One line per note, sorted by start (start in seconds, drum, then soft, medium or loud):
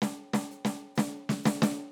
0.02 snare loud
0.34 snare loud
0.51 hi-hat pedal medium
0.65 snare loud
0.95 snare loud
0.95 hi-hat pedal medium
1.16 hi-hat pedal soft
1.29 snare loud
1.44 snare loud
1.44 hi-hat pedal medium
1.62 snare loud